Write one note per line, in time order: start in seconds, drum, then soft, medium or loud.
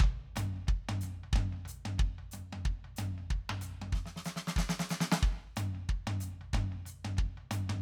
0.01 kick loud
0.01 floor tom medium
0.36 floor tom medium
0.36 hi-hat pedal medium
0.36 high tom loud
0.56 high tom soft
0.68 kick loud
0.68 floor tom soft
0.89 high tom loud
1.01 floor tom medium
1.01 hi-hat pedal medium
1.24 floor tom soft
1.33 kick loud
1.33 high tom loud
1.51 kick soft
1.51 floor tom soft
1.66 floor tom medium
1.66 hi-hat pedal medium
1.86 high tom loud
1.99 kick loud
1.99 floor tom soft
2.19 floor tom soft
2.32 hi-hat pedal medium
2.32 high tom medium
2.53 high tom loud
2.65 kick medium
2.65 floor tom soft
2.85 floor tom soft
2.97 hi-hat pedal medium
2.97 high tom loud
3.05 kick soft
3.18 floor tom soft
3.31 kick medium
3.31 floor tom soft
3.50 high tom loud
3.61 floor tom medium
3.61 hi-hat pedal medium
3.82 high tom loud
3.93 kick medium
3.93 snare soft
4.06 snare soft
4.17 snare medium
4.25 snare medium
4.25 hi-hat pedal medium
4.36 snare medium
4.48 snare medium
4.56 kick medium
4.56 snare loud
4.70 snare loud
4.80 snare loud
4.90 snare loud
4.90 hi-hat pedal medium
5.01 snare loud
5.12 snare loud
5.23 kick loud
5.23 floor tom medium
5.48 floor tom soft
5.56 hi-hat pedal medium
5.56 high tom loud
5.75 floor tom soft
5.89 kick medium
5.89 floor tom soft
6.07 high tom loud
6.21 floor tom soft
6.21 hi-hat pedal medium
6.41 floor tom soft
6.54 kick medium
6.54 high tom loud
6.72 floor tom soft
6.86 floor tom soft
6.86 hi-hat pedal medium
7.05 high tom loud
7.17 kick medium
7.17 floor tom medium
7.38 floor tom soft
7.51 hi-hat pedal medium
7.51 high tom loud
7.70 high tom loud